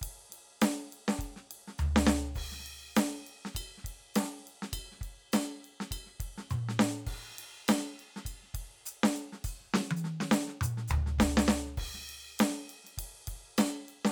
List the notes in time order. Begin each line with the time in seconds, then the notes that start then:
0.01 kick, hi-hat pedal, ride
0.08 kick
0.30 snare, ride
0.62 snare, hi-hat pedal, ride
0.89 hi-hat pedal, ride
1.09 snare
1.19 kick, ride
1.26 kick
1.29 kick
1.37 snare
1.51 ride
1.68 snare
1.79 floor tom, hi-hat pedal
1.97 snare
2.07 snare
2.27 snare
2.35 kick, hi-hat pedal, crash
2.42 kick
2.46 kick
2.52 snare
2.60 snare
2.67 ride
2.96 snare, hi-hat pedal, ride
3.27 ride
3.46 snare
3.54 kick, hi-hat pedal, ride bell
3.61 kick
3.64 kick
3.78 snare
3.85 kick, ride
3.93 kick
4.15 snare, hi-hat pedal, ride
4.24 snare
4.48 ride
4.63 snare
4.73 kick, ride bell
4.79 kick
4.82 kick
4.92 snare
4.99 kick, snare
5.04 snare, ride
5.08 kick
5.33 snare, hi-hat pedal, ride bell
5.43 snare
5.65 ride
5.81 snare
5.92 kick, snare, ride bell
5.97 kick
6.07 snare
6.20 kick, ride
6.27 kick
6.38 snare
6.50 hi-hat pedal, mid tom
6.69 snare
6.80 snare
7.07 kick, crash
7.14 kick
7.17 kick
7.31 snare
7.35 snare
7.39 ride
7.69 snare, hi-hat pedal, ride bell
7.78 snare
8.00 ride
8.17 snare
8.26 kick, ride bell
8.34 kick
8.44 snare
8.55 kick, ride
8.62 kick
8.86 hi-hat pedal, ride
9.04 snare
9.17 ride
9.33 snare
9.45 kick, hi-hat pedal, ride bell
9.61 snare
9.68 kick
9.74 snare
9.91 high tom
9.97 hi-hat pedal
10.05 snare
10.21 snare
10.32 snare, hi-hat pedal
10.48 snare
10.62 hi-hat pedal, mid tom
10.78 snare
10.88 kick, hi-hat pedal, floor tom
11.07 snare
11.19 kick, snare, hi-hat pedal
11.38 snare
11.49 snare
11.67 snare
11.78 kick, crash
11.88 kick
11.95 snare
12.01 snare
12.06 snare, ride
12.39 snare, hi-hat pedal, ride
12.50 snare
12.70 ride
12.85 snare, ride
12.91 snare
12.97 kick, hi-hat pedal, ride
13.28 kick, ride
13.37 kick
13.58 snare, hi-hat pedal, ride bell
13.66 snare
13.89 ride
14.05 snare